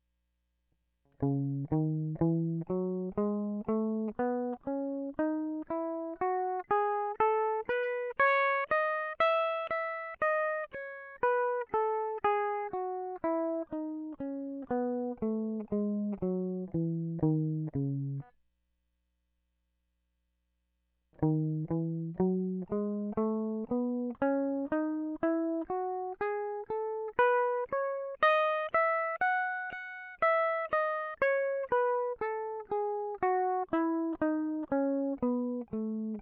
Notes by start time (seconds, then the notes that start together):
1.23 C#3
1.73 D#3
2.22 E3
2.71 F#3
3.18 G#3
3.69 A3
4.20 B3
4.67 C#4
5.19 D#4
5.71 E4
6.22 F#4
6.71 G#4
7.20 A4
7.69 B4
8.20 C#5
8.71 D#5
9.20 E5
9.71 E5
10.22 D#5
10.75 C#5
11.23 B4
11.74 A4
12.25 G#4
12.74 F#4
13.24 E4
13.73 D#4
14.21 C#4
14.71 B3
15.23 A3
15.73 G#3
16.23 F#3
16.75 E3
17.23 D#3
17.76 C#3
21.23 D#3
21.72 E3
22.20 F#3
22.73 G#3
23.18 A3
23.72 B3
24.22 C#4
24.72 D#4
25.23 E4
25.70 F#4
26.21 G#4
26.70 A4
27.19 B4
27.73 C#5
28.23 D#5
28.75 E5
29.21 F#5
30.22 E5
30.73 D#5
31.22 C#5
31.72 B4
32.21 A4
32.71 G#4
33.23 F#4
33.73 E4
34.22 D#4
34.72 C#4
35.23 B3
35.74 A3